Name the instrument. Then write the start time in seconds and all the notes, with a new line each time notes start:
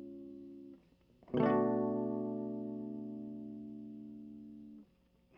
electric guitar
1.35 B2 D#3
1.41 A3 D4
1.46 F#4